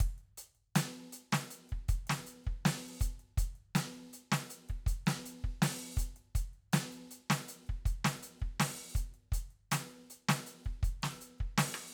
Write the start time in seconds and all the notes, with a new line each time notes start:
0.00 kick, closed hi-hat
0.18 closed hi-hat
0.38 closed hi-hat
0.55 closed hi-hat
0.75 closed hi-hat, snare
0.94 closed hi-hat
1.12 closed hi-hat
1.32 snare, closed hi-hat
1.50 closed hi-hat
1.69 kick, closed hi-hat
1.88 closed hi-hat, kick
2.07 snare, closed hi-hat
2.26 closed hi-hat
2.44 kick, closed hi-hat
2.65 open hi-hat, snare
3.00 closed hi-hat, kick, hi-hat pedal
3.19 closed hi-hat
3.38 closed hi-hat, kick
3.55 closed hi-hat
3.75 closed hi-hat, snare
3.94 closed hi-hat
4.13 closed hi-hat
4.32 snare, closed hi-hat
4.50 closed hi-hat
4.69 kick, closed hi-hat
4.86 closed hi-hat, kick
5.06 snare, closed hi-hat
5.26 closed hi-hat
5.43 kick, closed hi-hat
5.62 open hi-hat, snare
5.97 closed hi-hat, kick, hi-hat pedal
6.16 closed hi-hat
6.35 closed hi-hat, kick
6.53 closed hi-hat
6.73 closed hi-hat, snare
6.92 closed hi-hat
7.11 closed hi-hat
7.30 snare, closed hi-hat
7.48 closed hi-hat
7.67 kick, closed hi-hat
7.85 closed hi-hat, kick
8.05 closed hi-hat, snare
8.23 closed hi-hat
8.40 kick, closed hi-hat
8.60 open hi-hat, snare
8.94 closed hi-hat, kick, hi-hat pedal
9.14 closed hi-hat
9.32 closed hi-hat, kick
9.50 closed hi-hat
9.71 closed hi-hat, snare
9.90 closed hi-hat
10.10 closed hi-hat
10.29 snare, closed hi-hat
10.46 closed hi-hat
10.65 kick, closed hi-hat
10.83 closed hi-hat, kick
11.02 snare, closed hi-hat
11.21 closed hi-hat
11.38 kick, closed hi-hat
11.58 open hi-hat, snare
11.74 cross-stick